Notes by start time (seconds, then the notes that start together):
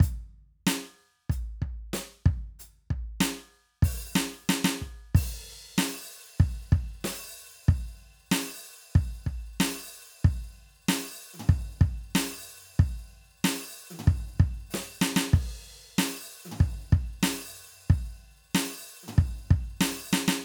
0.01 closed hi-hat, kick
0.67 closed hi-hat, snare
0.78 snare
1.30 closed hi-hat, kick
1.63 kick
1.94 closed hi-hat, snare
2.26 kick
2.60 closed hi-hat
2.91 kick
3.21 closed hi-hat, snare
3.83 open hi-hat, kick
4.16 snare
4.47 snare, hi-hat pedal
4.65 snare
4.82 kick
5.15 open hi-hat, kick, crash
5.79 open hi-hat, snare
6.41 kick
6.73 kick
7.05 open hi-hat, snare
7.69 kick
8.32 open hi-hat, snare
8.96 kick
9.27 kick
9.61 open hi-hat, snare
9.68 snare
10.25 kick
10.89 open hi-hat, snare
11.34 high tom
11.40 floor tom
11.50 kick
11.82 kick
12.16 open hi-hat, snare
12.80 kick
13.45 open hi-hat, snare
13.91 high tom
14.00 floor tom
14.08 kick
14.40 kick
14.70 open hi-hat
14.75 snare
15.02 snare
15.17 snare
15.34 kick, crash
15.99 open hi-hat, snare
16.46 high tom
16.52 floor tom
16.61 kick
16.93 kick
17.23 open hi-hat, snare
17.91 kick
18.55 open hi-hat, snare
19.04 high tom
19.09 floor tom
19.19 kick
19.51 kick
19.81 open hi-hat, snare
20.14 snare
20.29 snare